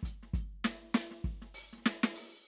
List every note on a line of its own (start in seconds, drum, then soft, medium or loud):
0.01 kick soft
0.01 snare soft
0.05 closed hi-hat medium
0.05 snare soft
0.24 snare soft
0.35 closed hi-hat medium
0.35 kick medium
0.65 closed hi-hat loud
0.65 snare loud
0.95 closed hi-hat loud
0.95 snare loud
1.12 snare soft
1.25 kick medium
1.25 closed hi-hat soft
1.43 snare soft
1.55 open hi-hat loud
1.74 snare soft
1.79 snare soft
1.79 hi-hat pedal soft
1.83 snare soft
1.87 snare loud
2.04 snare loud
2.16 open hi-hat loud